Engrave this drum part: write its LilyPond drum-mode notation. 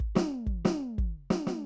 \new DrumStaff \drummode { \time 4/4 \tempo 4 = 122 \tuplet 3/2 { bd8 <tomfh sn>8 r8 bd8 <tomfh sn>8 r8 bd8 r8 <tomfh sn>8 } <sn tomfh>4 | }